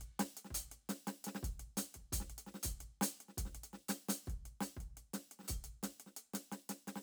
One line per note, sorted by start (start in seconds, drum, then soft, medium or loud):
0.01 closed hi-hat soft
0.19 snare medium
0.19 closed hi-hat medium
0.37 closed hi-hat medium
0.45 snare soft
0.51 closed hi-hat loud
0.51 kick soft
0.72 closed hi-hat soft
0.89 snare medium
0.89 closed hi-hat medium
1.07 snare medium
1.07 closed hi-hat medium
1.24 snare soft
1.24 closed hi-hat medium
1.35 snare soft
1.43 kick medium
1.43 closed hi-hat medium
1.60 closed hi-hat soft
1.77 closed hi-hat loud
1.77 snare medium
1.94 kick soft
1.94 closed hi-hat soft
2.12 closed hi-hat loud
2.12 kick medium
2.20 snare soft
2.30 closed hi-hat soft
2.38 closed hi-hat medium
2.47 snare soft
2.54 snare soft
2.63 closed hi-hat loud
2.63 kick soft
2.81 closed hi-hat soft
3.01 closed hi-hat loud
3.01 snare medium
3.20 closed hi-hat soft
3.28 snare soft
3.38 kick soft
3.38 closed hi-hat medium
3.45 snare soft
3.55 closed hi-hat soft
3.64 closed hi-hat medium
3.73 snare soft
3.89 closed hi-hat medium
3.89 snare medium
4.09 open hi-hat loud
4.09 snare medium
4.25 kick soft
4.25 hi-hat pedal soft
4.30 closed hi-hat soft
4.45 closed hi-hat soft
4.61 closed hi-hat medium
4.61 snare medium
4.77 kick soft
4.77 closed hi-hat soft
4.97 closed hi-hat soft
5.14 snare medium
5.14 closed hi-hat medium
5.31 closed hi-hat soft
5.39 snare soft
5.43 snare soft
5.48 closed hi-hat medium
5.48 kick soft
5.64 closed hi-hat medium
5.83 snare medium
5.83 closed hi-hat medium
6.00 closed hi-hat soft
6.06 snare soft
6.17 closed hi-hat medium
6.34 snare medium
6.34 closed hi-hat medium
6.52 snare soft
6.52 closed hi-hat soft
6.69 snare soft
6.69 closed hi-hat medium
6.87 snare soft
6.87 closed hi-hat soft
6.96 snare soft